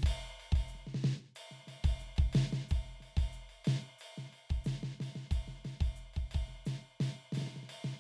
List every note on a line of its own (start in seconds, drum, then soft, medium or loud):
0.01 kick medium
0.01 hi-hat pedal medium
0.07 ride medium
0.41 ride soft
0.53 kick medium
0.53 ride medium
0.69 hi-hat pedal medium
0.76 snare soft
0.88 snare soft
0.95 snare medium
1.05 snare medium
1.18 snare soft
1.36 hi-hat pedal medium
1.36 ride medium
1.52 snare soft
1.68 snare soft
1.68 ride soft
1.85 kick medium
1.85 ride medium
2.00 snare soft
2.00 hi-hat pedal medium
2.17 kick medium
2.17 ride soft
2.34 snare loud
2.34 ride medium
2.53 snare medium
2.69 kick medium
2.69 hi-hat pedal medium
2.69 ride soft
2.87 snare soft
3.01 snare soft
3.01 ride soft
3.18 kick medium
3.18 ride medium
3.33 snare soft
3.33 hi-hat pedal medium
3.50 ride soft
3.65 snare medium
3.65 ride medium
3.86 snare soft
3.99 hi-hat pedal medium
3.99 ride medium
4.18 snare soft
4.33 ride soft
4.50 kick soft
4.50 ride soft
4.65 snare medium
4.65 hi-hat pedal medium
4.65 ride soft
4.84 snare medium
5.01 snare medium
5.01 ride soft
5.16 snare soft
5.32 kick medium
5.32 hi-hat pedal medium
5.32 ride soft
5.49 snare soft
5.65 snare soft
5.65 ride soft
5.81 kick medium
5.81 ride soft
5.97 hi-hat pedal medium
6.14 kick soft
6.14 ride soft
6.32 kick soft
6.32 ride medium
6.49 snare soft
6.66 snare medium
6.66 hi-hat pedal medium
6.66 ride soft
7.01 snare medium
7.01 ride medium
7.33 snare medium
7.33 hi-hat pedal medium
7.33 ride medium
7.38 snare medium
7.43 snare soft
7.48 snare soft
7.57 snare soft
7.64 snare soft
7.70 ride medium
7.85 snare medium